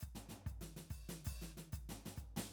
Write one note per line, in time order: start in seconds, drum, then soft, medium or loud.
0.00 kick soft
0.00 hi-hat pedal medium
0.15 snare soft
0.15 floor tom medium
0.29 snare soft
0.29 floor tom medium
0.46 kick soft
0.46 hi-hat pedal soft
0.61 snare soft
0.61 high tom medium
0.76 snare soft
0.76 high tom soft
0.90 kick soft
0.90 hi-hat pedal soft
1.09 snare soft
1.09 high tom medium
1.25 kick soft
1.25 hi-hat pedal medium
1.41 snare soft
1.41 high tom soft
1.57 snare soft
1.57 high tom soft
1.72 kick soft
1.72 hi-hat pedal medium
1.89 snare soft
1.89 floor tom medium
2.05 snare soft
2.05 floor tom soft
2.17 kick soft
2.17 hi-hat pedal soft
2.36 snare medium
2.36 floor tom medium